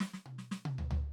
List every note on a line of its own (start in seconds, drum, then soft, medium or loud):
0.00 snare medium
0.14 snare medium
0.26 high tom medium
0.38 snare soft
0.51 snare medium
0.65 high tom loud
0.78 floor tom medium
0.91 floor tom loud